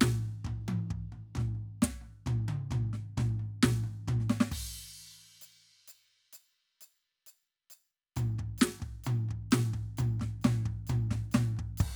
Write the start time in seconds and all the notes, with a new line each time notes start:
0.01 kick, snare, floor tom, percussion
0.45 kick, floor tom
0.54 kick
0.68 floor tom, high tom
0.91 kick, floor tom
1.12 floor tom
1.36 kick, snare, floor tom
1.55 floor tom
1.82 kick, snare, floor tom
2.02 floor tom
2.27 kick, floor tom
2.37 kick
2.48 mid tom
2.71 kick, floor tom
2.93 snare
3.18 kick, snare, floor tom
3.40 floor tom
3.63 kick, snare, floor tom
3.84 floor tom
4.08 kick, floor tom
4.19 kick, snare
4.30 snare
4.41 snare
4.52 kick, crash
5.42 percussion
5.88 percussion
6.33 percussion
6.81 percussion
7.27 percussion
7.71 percussion
8.16 kick, snare, floor tom, percussion
8.39 kick, floor tom
8.58 snare, percussion
8.62 floor tom
8.80 kick, floor tom
9.04 floor tom, percussion
9.29 kick, floor tom
9.51 snare, floor tom, percussion
9.74 kick, floor tom
9.98 kick, floor tom, percussion
10.20 kick, snare, floor tom
10.42 kick, snare, floor tom, percussion
10.66 kick, floor tom
10.87 kick, floor tom, percussion
11.11 kick, snare, floor tom
11.32 snare, floor tom, percussion
11.36 kick
11.57 kick, floor tom
11.78 kick, crash, percussion